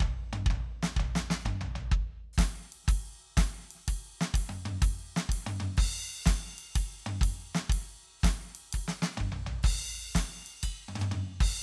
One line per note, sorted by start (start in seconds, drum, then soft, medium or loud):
0.01 kick loud
0.01 floor tom loud
0.34 high tom loud
0.47 kick loud
0.51 floor tom loud
0.83 snare loud
0.93 hi-hat pedal soft
0.97 kick loud
0.97 floor tom loud
1.16 snare loud
1.31 snare loud
1.41 hi-hat pedal soft
1.46 kick medium
1.46 high tom loud
1.62 floor tom loud
1.76 floor tom loud
1.92 kick loud
2.34 hi-hat pedal medium
2.39 kick loud
2.39 snare loud
2.39 ride loud
2.73 ride medium
2.84 snare soft
2.89 kick loud
2.89 snare soft
2.89 ride loud
3.38 kick loud
3.38 snare loud
3.38 ride loud
3.71 ride medium
3.76 snare soft
3.79 snare soft
3.89 kick medium
3.89 ride loud
4.22 snare loud
4.35 kick loud
4.35 ride loud
4.50 high tom loud
4.66 high tom loud
4.83 kick loud
4.83 ride loud
5.17 snare loud
5.24 hi-hat pedal soft
5.30 kick medium
5.30 ride loud
5.47 high tom loud
5.61 high tom loud
5.78 kick loud
5.78 crash loud
6.23 snare loud
6.23 hi-hat pedal medium
6.27 kick loud
6.27 ride loud
6.59 ride medium
6.76 kick loud
6.76 ride loud
7.07 high tom loud
7.16 hi-hat pedal soft
7.22 kick loud
7.22 ride loud
7.56 snare loud
7.70 kick loud
7.70 ride loud
8.20 kick loud
8.20 hi-hat pedal soft
8.25 snare loud
8.25 ride loud
8.56 ride medium
8.73 kick medium
8.73 ride loud
8.89 snare loud
9.03 snare loud
9.12 hi-hat pedal soft
9.18 kick medium
9.18 high tom loud
9.33 floor tom loud
9.47 floor tom loud
9.64 kick loud
9.64 crash loud
10.11 hi-hat pedal soft
10.16 kick medium
10.16 snare loud
10.16 ride loud
10.47 ride medium
10.64 kick medium
10.64 ride bell loud
10.89 high tom loud
10.96 hi-hat pedal medium
10.96 high tom loud
11.02 high tom loud
11.12 high tom loud
11.41 kick loud
11.41 crash loud